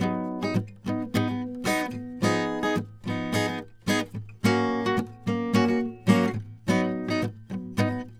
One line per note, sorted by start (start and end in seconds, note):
0.01 0.65 F#3
0.01 0.65 B3
0.01 0.42 D#4
0.45 0.65 D#4
0.87 1.09 B3
0.87 1.08 D#4
1.15 1.51 B3
1.15 1.30 D#4
1.65 1.90 F#3
1.65 1.91 B3
1.65 1.91 D#4
2.23 2.70 F3
2.23 2.86 B3
2.23 2.64 D#4
2.23 2.62 G#4
2.64 2.84 D#4
2.64 2.89 G#4
3.05 3.65 F3
3.05 3.33 B3
3.11 3.34 D#4
3.33 3.66 B3
3.33 3.47 D#4
3.33 3.47 G#4
3.47 3.67 D#4
3.47 3.67 G#4
3.88 4.03 F3
3.88 4.06 B3
3.88 4.07 D#4
3.88 4.05 G#4
4.45 5.09 A#3
4.45 4.84 C#4
4.45 4.82 F#4
4.84 5.09 C4
4.84 5.09 F#4
5.28 5.54 A#3
5.28 5.55 C#4
5.55 5.95 A#3
5.55 5.66 C#4
5.55 5.67 F#4
5.67 5.87 C#4
5.67 5.85 F#4
6.08 6.30 F#3
6.08 6.31 A#3
6.08 6.35 C#4
6.12 6.38 F#4
6.69 7.37 F#3
6.69 7.12 B3
6.69 7.11 D#4
7.11 7.32 B3
7.11 7.33 D#4
7.50 8.06 F#3
7.50 7.79 B3
7.79 8.07 B3
7.79 7.91 D#4